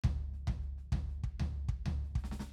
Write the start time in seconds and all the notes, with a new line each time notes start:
0.04 kick, floor tom
0.33 snare
0.47 kick, floor tom
0.61 snare
0.77 snare
0.92 kick, floor tom
1.09 snare
1.24 kick
1.40 floor tom
1.69 kick
1.86 floor tom
2.04 snare
2.09 snare
2.15 kick, snare
2.24 snare
2.31 snare
2.39 snare